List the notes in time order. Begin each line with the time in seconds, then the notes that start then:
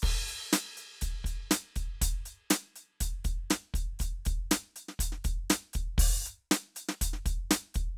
0.01 kick, hi-hat pedal, crash
0.29 closed hi-hat
0.54 closed hi-hat, snare
0.78 closed hi-hat
1.02 closed hi-hat, kick
1.25 closed hi-hat, kick
1.52 closed hi-hat, snare
1.76 closed hi-hat, kick
2.02 closed hi-hat, kick
2.26 closed hi-hat
2.51 closed hi-hat, snare
2.76 closed hi-hat
3.01 closed hi-hat, kick
3.25 closed hi-hat, kick
3.51 closed hi-hat, snare
3.75 open hi-hat, kick
4.00 closed hi-hat, kick, hi-hat pedal
4.26 closed hi-hat, kick
4.52 closed hi-hat, snare
4.77 closed hi-hat
4.89 snare
5.00 closed hi-hat, kick
5.13 snare
5.25 closed hi-hat, kick
5.51 closed hi-hat, snare
5.74 closed hi-hat, kick
5.99 open hi-hat, kick
6.26 closed hi-hat, hi-hat pedal
6.52 closed hi-hat, snare
6.76 closed hi-hat, hi-hat pedal
6.89 snare
7.02 closed hi-hat, kick
7.14 snare
7.27 closed hi-hat, kick
7.52 closed hi-hat, snare
7.75 closed hi-hat, kick